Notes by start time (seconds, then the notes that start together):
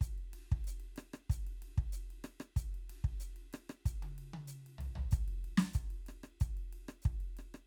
0.01 kick, hi-hat pedal, ride
0.18 ride
0.34 ride
0.52 kick
0.65 hi-hat pedal, ride
0.80 ride
0.96 cross-stick, ride
1.14 cross-stick
1.30 kick, hi-hat pedal, ride
1.47 ride
1.62 ride
1.78 kick
1.93 hi-hat pedal, ride
2.11 ride
2.24 cross-stick, ride
2.40 cross-stick
2.57 kick, hi-hat pedal, ride
2.75 ride
2.90 ride
3.04 kick
3.20 hi-hat pedal, ride
3.36 ride
3.53 cross-stick, ride
3.70 cross-stick
3.86 kick, hi-hat pedal, ride
4.03 high tom, ride
4.18 ride
4.34 high tom
4.48 hi-hat pedal, ride
4.67 ride
4.79 floor tom, ride
4.96 floor tom
5.11 kick, hi-hat pedal, ride
5.28 ride
5.45 ride
5.58 snare
5.74 kick, hi-hat pedal, ride
5.91 ride
6.07 cross-stick, ride
6.24 cross-stick
6.40 kick, hi-hat pedal, ride
6.57 ride
6.73 ride
6.89 cross-stick
7.02 kick, hi-hat pedal, ride
7.21 ride
7.37 cross-stick, ride
7.54 cross-stick